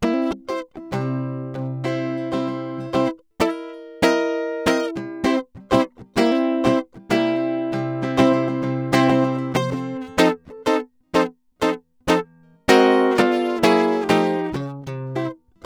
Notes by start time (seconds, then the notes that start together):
0.04 G3 A#3 E4
0.15 C4
0.49 E4 F#4 C5
0.77 E4 F#4
0.93 C3 G3 C4
1.55 C3 G3
1.85 C4 E4 F#4 C5
2.18 C4
2.33 C3 G3 C4 E4 G4 C5
2.48 G3 C4 E4
2.79 C3 G3
2.94 C3 G3 C4 E4 G4 C5
3.08 E4
3.41 B3 E4 A#4 D#5
4.04 C4 E4 A#4 D#5
4.67 C4 E4 A#4 D#5
4.96 C3 G3
5.25 G3 C4 E4 G4 C5
5.57 G3
5.72 B2 G3 C4 E4 F#4 C5
6.01 G3
6.17 C3 G3 A#3 E4 G4 C5
6.33 C4
6.65 B2 G3 C4 E4 G4 C5
6.97 G3
7.11 C3 G3 A#3 E4 G4 C5
7.37 C4
7.73 C3 G3 C4
8.03 G3 C4 E4 C5
8.18 C3 G3 C4 E4 C5
8.34 C4 E4
8.49 G3 C4 E4
8.63 C3 G3 C4
8.94 C3 G3 C4 E4 C5
9.09 G3 C4 E4 C5
9.13 C3
9.25 C4 E4
9.37 E4 C5
9.55 C3 F3 A#3 C5
9.71 C3 C4 A4 C5
9.75 F3
10.19 F3 C4 D#4 A4 C5
10.51 A4 C5
10.67 C4 D#4 A4 C5
11.15 F3 C4 D#4 A4 C5
11.62 F3 C4 D#4 A4 C5
12.09 F3 C4 D#4 A4 C5
12.70 G#3 C4 F#4 A#4 D#5
13.19 G3 B3 F4 A4 D5
13.64 F#3 A#3 E4 G#4 C#5
14.10 F3 A3 D#4 G4 C5
14.54 C#3 F#3
14.88 C3
15.17 E4 G4 C5